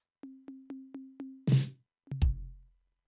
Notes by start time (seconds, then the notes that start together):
0.00 hi-hat pedal
0.23 high tom
0.48 high tom
0.70 high tom
0.95 high tom
1.20 closed hi-hat, high tom
1.48 snare
1.52 snare
2.07 high tom
2.12 floor tom
2.22 kick